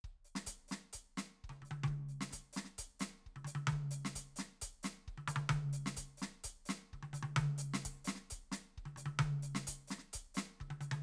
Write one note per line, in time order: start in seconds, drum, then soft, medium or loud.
0.04 kick soft
0.24 hi-hat pedal soft
0.35 snare medium
0.46 closed hi-hat medium
0.46 kick soft
0.68 snare medium
0.68 hi-hat pedal soft
0.93 closed hi-hat medium
0.93 kick soft
1.17 snare medium
1.17 hi-hat pedal soft
1.44 kick soft
1.49 high tom soft
1.62 hi-hat pedal soft
1.62 high tom soft
1.71 high tom medium
1.83 high tom loud
1.87 kick soft
2.08 hi-hat pedal soft
2.21 snare medium
2.31 closed hi-hat medium
2.31 kick soft
2.31 snare soft
2.53 snare medium
2.53 hi-hat pedal medium
2.64 snare soft
2.78 closed hi-hat medium
2.78 kick soft
2.99 snare medium
2.99 hi-hat pedal medium
3.26 kick soft
3.36 high tom soft
3.44 hi-hat pedal medium
3.44 high tom medium
3.55 high tom medium
3.67 high tom loud
3.72 kick soft
3.91 hi-hat pedal medium
4.05 snare medium
4.15 closed hi-hat medium
4.15 kick soft
4.36 snare medium
4.36 hi-hat pedal medium
4.61 closed hi-hat medium
4.61 kick soft
4.83 snare medium
4.83 hi-hat pedal medium
5.07 kick soft
5.17 high tom medium
5.28 hi-hat pedal medium
5.28 high tom medium
5.36 high tom medium
5.49 kick soft
5.49 high tom loud
5.73 hi-hat pedal medium
5.73 high tom soft
5.86 snare medium
5.97 closed hi-hat medium
5.97 kick soft
6.17 hi-hat pedal soft
6.22 snare medium
6.33 snare soft
6.44 closed hi-hat medium
6.44 kick soft
6.65 snare medium
6.65 hi-hat pedal soft
6.93 kick soft
6.93 high tom soft
7.02 high tom medium
7.13 hi-hat pedal medium
7.13 high tom medium
7.22 high tom medium
7.36 kick soft
7.36 high tom loud
7.58 hi-hat pedal medium
7.74 snare medium
7.85 kick soft
7.85 closed hi-hat medium
8.04 snare medium
8.04 hi-hat pedal medium
8.15 snare soft
8.30 closed hi-hat medium
8.30 kick soft
8.52 snare medium
8.52 hi-hat pedal medium
8.77 kick soft
8.85 high tom medium
8.96 hi-hat pedal medium
8.96 high tom soft
9.06 high tom medium
9.19 kick soft
9.19 high tom loud
9.42 hi-hat pedal medium
9.55 snare medium
9.67 closed hi-hat medium
9.67 kick soft
9.87 snare medium
9.87 hi-hat pedal soft
9.98 snare soft
10.13 closed hi-hat medium
10.13 kick soft
10.34 snare medium
10.34 hi-hat pedal medium
10.60 kick soft
10.60 high tom soft
10.81 hi-hat pedal soft
10.81 high tom medium
10.91 high tom medium